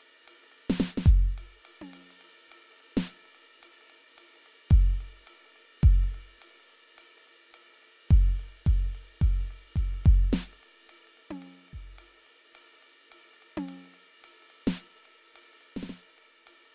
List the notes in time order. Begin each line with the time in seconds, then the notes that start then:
0.01 ride
0.25 hi-hat pedal, ride
0.44 ride
0.52 ride
0.69 snare, hi-hat pedal
0.80 snare
0.98 snare
1.06 kick, crash
1.31 hi-hat pedal
1.38 ride
1.66 ride
1.82 high tom
1.87 hi-hat pedal
1.94 ride
2.11 ride
2.21 ride
2.48 hi-hat pedal
2.52 ride
2.72 ride
2.81 ride
2.97 snare, hi-hat pedal
3.08 ride
3.26 ride
3.35 ride
3.60 hi-hat pedal, ride
3.82 ride
3.90 ride
4.15 hi-hat pedal, ride
4.36 ride
4.47 ride
4.69 kick, hi-hat pedal, ride
4.91 ride
5.01 ride
5.24 hi-hat pedal, ride
5.46 ride
5.56 ride
5.80 kick, hi-hat pedal, ride
6.04 ride
6.15 ride
6.38 hi-hat pedal
6.42 ride
6.60 ride
6.70 ride
6.96 hi-hat pedal, ride
7.18 ride
7.28 ride
7.51 hi-hat pedal
7.55 ride
7.74 ride
7.83 ride
8.09 kick, hi-hat pedal, ride
8.29 ride
8.40 ride
8.65 kick, hi-hat pedal, ride
8.86 ride
8.95 ride
9.20 kick, hi-hat pedal, ride
9.41 ride
9.51 ride
9.76 kick, hi-hat pedal, ride
9.95 ride
10.06 kick, ride
10.31 snare, hi-hat pedal, ride
10.54 ride
10.64 ride
10.86 hi-hat pedal, ride
11.08 ride
11.31 hi-hat pedal, high tom
11.43 ride
11.62 ride
11.69 ride
11.74 kick
11.95 hi-hat pedal, ride
12.17 ride
12.27 ride
12.53 hi-hat pedal, ride
12.74 ride
12.83 ride
13.10 hi-hat pedal, ride
13.34 ride
13.43 ride
13.58 hi-hat pedal, high tom
13.69 ride
13.86 ride
13.94 ride
14.21 hi-hat pedal, ride
14.43 ride
14.51 ride
14.68 snare, hi-hat pedal
14.78 ride
14.97 ride
15.06 ride
15.34 hi-hat pedal, ride
15.54 ride
15.61 ride
15.77 snare
15.83 snare, hi-hat pedal
15.90 snare, ride
16.10 ride
16.19 ride
16.46 hi-hat pedal, ride
16.66 ride